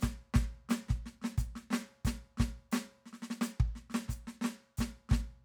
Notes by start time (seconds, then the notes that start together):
0.01 kick, snare, hi-hat pedal
0.34 kick, snare
0.69 snare, hi-hat pedal
0.71 snare
0.88 kick, snare
1.06 snare
1.22 snare
1.24 snare
1.38 kick, snare, hi-hat pedal
1.55 snare
1.70 snare
1.73 snare
2.05 kick, snare, hi-hat pedal
2.37 kick, snare
2.40 snare
2.72 snare, hi-hat pedal
2.75 snare
3.06 snare
3.13 snare
3.22 snare
3.30 snare
3.41 snare, hi-hat pedal
3.60 kick
3.75 snare
3.90 snare
3.94 snare
4.08 kick, snare, hi-hat pedal
4.27 snare
4.41 snare
4.44 snare
4.77 kick, snare, hi-hat pedal
5.09 kick, snare
5.12 snare